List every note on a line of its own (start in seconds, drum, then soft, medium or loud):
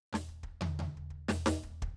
0.13 snare medium
0.13 floor tom medium
0.28 kick soft
0.43 kick soft
0.61 floor tom loud
0.61 high tom loud
0.79 floor tom medium
0.79 high tom medium
0.97 kick soft
1.10 kick soft
1.28 snare medium
1.28 floor tom loud
1.46 snare loud
1.46 floor tom medium
1.63 kick soft
1.82 kick medium